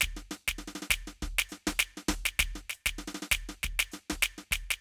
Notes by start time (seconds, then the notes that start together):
0.01 kick, snare
0.17 snare
0.31 snare, hi-hat pedal
0.48 kick, snare
0.58 snare
0.68 snare
0.75 snare
0.82 snare
0.90 kick, snare, hi-hat pedal
1.07 snare
1.22 kick, snare
1.31 kick
1.39 snare
1.49 snare, hi-hat pedal
1.67 kick, snare
1.79 snare
1.97 snare
2.08 kick, snare, hi-hat pedal
2.26 snare
2.39 kick, snare
2.45 kick
2.55 snare
2.70 snare, hi-hat pedal
2.86 kick, snare
2.98 snare
3.08 snare
3.15 snare
3.22 snare
3.31 kick, snare, hi-hat pedal
3.49 snare
3.63 kick, snare
3.72 kick
3.79 snare
3.92 snare, hi-hat pedal
4.10 kick, snare
4.22 snare
4.38 snare
4.51 kick, snare, hi-hat pedal
4.71 snare